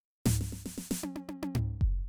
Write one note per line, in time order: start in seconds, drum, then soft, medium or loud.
0.26 snare loud
0.26 floor tom loud
0.41 snare soft
0.52 snare soft
0.66 snare medium
0.78 snare medium
0.91 snare medium
1.03 high tom loud
1.16 high tom medium
1.29 high tom medium
1.43 high tom loud
1.55 floor tom loud
1.81 kick medium